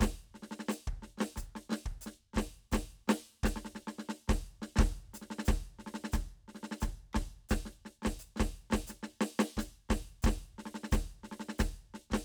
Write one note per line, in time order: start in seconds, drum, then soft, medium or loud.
0.01 kick medium
0.01 snare medium
0.01 hi-hat pedal medium
0.03 snare medium
0.35 snare soft
0.43 snare soft
0.52 snare soft
0.60 snare soft
0.69 snare medium
0.69 hi-hat pedal medium
0.88 kick medium
1.03 snare soft
1.18 snare soft
1.21 snare medium
1.37 kick soft
1.37 snare soft
1.37 hi-hat pedal medium
1.56 snare soft
1.70 snare soft
1.72 snare medium
1.87 kick medium
2.02 hi-hat pedal medium
2.07 snare soft
2.34 kick medium
2.34 snare soft
2.38 snare medium
2.72 kick medium
2.72 snare soft
2.72 hi-hat pedal medium
2.74 snare medium
3.08 snare soft
3.08 snare loud
3.44 kick medium
3.44 snare medium
3.44 hi-hat pedal medium
3.57 snare soft
3.66 snare soft
3.76 snare soft
3.88 snare medium
3.99 snare soft
4.10 snare medium
4.29 kick medium
4.29 snare soft
4.30 snare medium
4.63 snare medium
4.77 kick loud
4.77 snare medium
4.80 snare medium
5.14 snare soft
5.14 hi-hat pedal medium
5.22 snare soft
5.31 snare soft
5.39 snare medium
5.46 kick loud
5.46 snare medium
5.46 hi-hat pedal medium
5.80 snare soft
5.87 snare soft
5.95 snare medium
6.05 snare medium
6.13 kick medium
6.13 snare medium
6.13 hi-hat pedal medium
6.49 snare soft
6.55 snare soft
6.64 snare soft
6.72 snare medium
6.81 kick medium
6.81 snare medium
6.81 hi-hat pedal medium
7.14 kick medium
7.14 cross-stick soft
7.14 snare medium
7.50 kick medium
7.50 snare medium
7.50 hi-hat pedal medium
7.66 snare soft
7.86 snare soft
8.03 snare soft
8.06 kick medium
8.06 snare medium
8.20 hi-hat pedal medium
8.37 snare soft
8.40 kick medium
8.40 snare medium
8.71 snare soft
8.73 kick medium
8.73 snare loud
8.88 snare soft
8.88 hi-hat pedal medium
9.04 snare soft
9.22 snare medium
9.40 snare loud
9.58 kick soft
9.58 snare medium
9.58 hi-hat pedal medium
9.90 kick medium
9.90 snare soft
9.90 snare medium
10.23 kick loud
10.23 snare soft
10.23 hi-hat pedal medium
10.27 snare medium
10.59 snare soft
10.66 snare soft
10.75 snare soft
10.84 snare soft
10.92 kick loud
10.92 snare medium
10.92 hi-hat pedal medium
11.24 snare soft
11.32 snare soft
11.40 snare soft
11.50 snare medium
11.59 kick medium
11.59 snare medium
11.59 hi-hat pedal medium
11.95 snare soft
12.11 kick soft
12.11 snare soft
12.14 snare medium